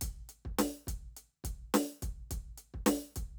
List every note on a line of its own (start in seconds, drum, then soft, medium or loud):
0.02 kick medium
0.02 closed hi-hat loud
0.30 closed hi-hat medium
0.46 kick medium
0.59 snare medium
0.59 closed hi-hat loud
0.88 kick medium
0.88 closed hi-hat medium
1.17 closed hi-hat medium
1.45 kick medium
1.45 closed hi-hat medium
1.75 snare loud
1.75 closed hi-hat loud
2.03 kick medium
2.03 closed hi-hat medium
2.31 kick medium
2.31 closed hi-hat medium
2.58 closed hi-hat medium
2.75 kick soft
2.87 snare loud
2.87 closed hi-hat loud
3.17 kick medium
3.17 closed hi-hat medium